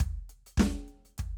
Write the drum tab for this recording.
HH |x-xx--xxx-------|
SD |----o-----------|
BD |o---o---o-------|